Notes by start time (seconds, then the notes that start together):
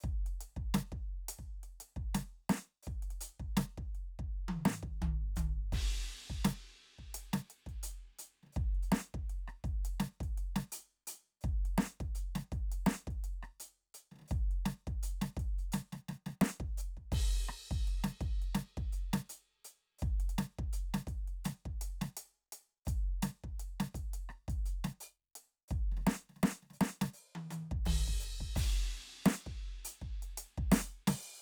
0.01 kick, hi-hat pedal
0.27 closed hi-hat
0.42 closed hi-hat
0.57 kick
0.75 snare
0.93 kick
1.29 closed hi-hat
1.39 kick
1.64 closed hi-hat
1.81 closed hi-hat
1.97 kick
2.15 snare, open hi-hat
2.50 snare, open hi-hat
2.83 hi-hat pedal
2.88 kick
3.03 closed hi-hat
3.11 closed hi-hat
3.22 closed hi-hat
3.40 kick
3.58 snare
3.78 kick
3.96 closed hi-hat
4.20 kick
4.49 high tom
4.66 snare
4.83 kick
5.03 floor tom
5.37 floor tom, hi-hat pedal
5.73 kick, crash, ride
6.31 kick
6.45 snare
6.99 kick
7.15 closed hi-hat
7.34 snare
7.51 closed hi-hat
7.67 kick, closed hi-hat
7.84 open hi-hat
8.19 open hi-hat
8.43 snare
8.47 snare
8.53 kick, hi-hat pedal
8.75 closed hi-hat
8.83 closed hi-hat
8.93 snare
9.15 kick
9.30 closed hi-hat
9.49 cross-stick
9.65 kick, closed hi-hat
9.86 closed hi-hat
10.01 snare
10.21 kick, closed hi-hat
10.38 closed hi-hat
10.57 snare
10.73 open hi-hat
11.08 open hi-hat
11.42 kick, hi-hat pedal
11.49 closed hi-hat
11.66 closed hi-hat
11.79 snare
12.01 kick, closed hi-hat
12.16 closed hi-hat
12.36 snare
12.53 kick, closed hi-hat
12.72 closed hi-hat
12.87 snare
13.08 kick, closed hi-hat
13.25 closed hi-hat
13.43 cross-stick
13.61 open hi-hat
13.95 open hi-hat
14.12 snare
14.16 snare
14.19 snare
14.22 snare
14.27 snare, hi-hat pedal
14.32 kick, closed hi-hat
14.52 closed hi-hat
14.66 snare
14.88 kick, closed hi-hat
15.04 closed hi-hat
15.22 snare
15.37 kick, closed hi-hat
15.59 closed hi-hat
15.73 closed hi-hat, snare
15.93 snare
16.09 snare
16.27 snare
16.42 snare
16.61 kick
16.78 hi-hat pedal
16.98 kick
17.13 kick, crash
17.49 cross-stick
17.72 kick, closed hi-hat
17.88 closed hi-hat
18.05 snare
18.21 kick, closed hi-hat
18.43 closed hi-hat
18.56 snare
18.78 kick, closed hi-hat
18.93 closed hi-hat
19.14 snare
19.30 open hi-hat
19.65 open hi-hat
19.99 kick, hi-hat pedal
20.21 closed hi-hat
20.30 closed hi-hat
20.39 snare
20.59 kick
20.74 closed hi-hat
20.95 snare
21.08 kick, closed hi-hat
21.28 closed hi-hat
21.45 closed hi-hat, snare
21.66 kick
21.82 closed hi-hat
22.02 snare
22.18 open hi-hat
22.53 open hi-hat
22.86 kick, closed hi-hat, hi-hat pedal
23.23 snare, closed hi-hat
23.44 kick
23.60 closed hi-hat
23.81 snare
23.95 kick, closed hi-hat
24.14 closed hi-hat
24.30 cross-stick
24.49 kick, closed hi-hat
24.67 closed hi-hat
24.85 snare
25.01 open hi-hat
25.36 open hi-hat
25.69 kick, hi-hat pedal
25.92 snare
25.97 snare
26.07 snare
26.30 snare
26.37 snare
26.44 snare
26.63 snare
26.71 snare, hi-hat pedal
26.82 snare
27.02 snare
27.14 hi-hat pedal
27.36 high tom
27.51 hi-hat pedal, high tom
27.72 kick
27.86 floor tom, crash
28.08 kick
28.21 hi-hat pedal
28.41 kick
28.56 open hi-hat, kick, ride
29.25 snare, hi-hat pedal
29.47 kick
29.86 closed hi-hat
30.02 kick
30.23 closed hi-hat
30.38 closed hi-hat
30.58 kick
30.72 open hi-hat, snare
31.08 open hi-hat, snare
31.39 hi-hat pedal